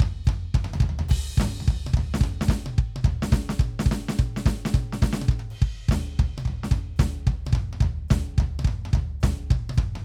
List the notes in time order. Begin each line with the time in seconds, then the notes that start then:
0.01 kick, mid tom
0.25 kick, hi-hat pedal
0.30 mid tom
0.55 kick, mid tom
0.65 mid tom
0.74 floor tom, hi-hat pedal
0.81 kick, floor tom
0.90 floor tom
1.00 floor tom
1.10 kick, crash
1.36 kick, hi-hat pedal
1.41 snare, floor tom
1.61 floor tom
1.69 kick
1.88 hi-hat pedal, high tom
1.95 kick, floor tom
2.15 snare
2.22 kick, mid tom
2.42 snare, hi-hat pedal
2.49 kick, snare
2.67 high tom
2.79 kick
2.97 high tom
3.05 kick, floor tom
3.23 snare
3.27 hi-hat pedal
3.33 kick, snare
3.50 snare
3.60 kick, high tom
3.80 snare, hi-hat pedal
3.87 kick
3.92 snare
4.10 snare
4.14 hi-hat pedal
4.20 kick, high tom
4.37 snare
4.43 kick, hi-hat pedal
4.47 snare
4.66 snare, hi-hat pedal
4.75 kick, high tom
4.94 snare
4.99 hi-hat pedal
5.03 kick, snare
5.14 snare
5.23 high tom
5.29 kick, high tom
5.40 mid tom
5.51 ride
5.63 kick
5.89 kick, snare, hi-hat pedal
5.94 floor tom
6.20 kick, floor tom
6.38 hi-hat pedal, high tom
6.46 kick, floor tom
6.64 snare
6.72 kick, mid tom
6.97 kick, snare, floor tom, hi-hat pedal
7.28 kick, floor tom
7.46 hi-hat pedal, high tom
7.54 kick, mid tom
7.74 mid tom
7.81 kick, floor tom
8.09 kick, snare, floor tom, hi-hat pedal
8.39 kick, floor tom
8.60 hi-hat pedal, high tom
8.66 kick, mid tom
8.86 mid tom
8.94 kick, floor tom
9.21 kick, snare, floor tom, hi-hat pedal
9.51 kick, high tom
9.70 hi-hat pedal, high tom
9.79 kick, mid tom
9.96 mid tom